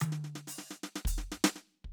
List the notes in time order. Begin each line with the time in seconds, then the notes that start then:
0.00 hi-hat pedal, high tom
0.12 snare
0.24 snare
0.35 snare
0.47 snare, hi-hat pedal
0.58 snare
0.71 snare
0.83 snare
0.96 snare
1.05 open hi-hat, kick
1.18 snare
1.32 snare
1.44 snare
1.56 snare
1.84 kick